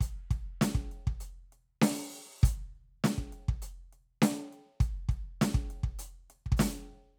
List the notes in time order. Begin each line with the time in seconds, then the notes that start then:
0.01 closed hi-hat, kick
0.31 kick, closed hi-hat
0.61 closed hi-hat, snare
0.75 kick
0.92 closed hi-hat
1.07 kick
1.21 closed hi-hat
1.53 closed hi-hat
1.82 open hi-hat, snare
2.42 closed hi-hat, kick, hi-hat pedal
2.75 closed hi-hat
3.04 closed hi-hat, snare
3.18 kick
3.33 closed hi-hat
3.49 kick
3.62 closed hi-hat
3.93 closed hi-hat
4.22 closed hi-hat, snare
4.53 closed hi-hat
4.81 closed hi-hat, kick
5.09 kick, closed hi-hat
5.42 closed hi-hat, snare
5.55 kick
5.71 closed hi-hat
5.84 kick, crash
5.99 closed hi-hat
6.30 closed hi-hat
6.46 kick
6.52 kick
6.57 open hi-hat, snare, hi-hat pedal
6.93 kick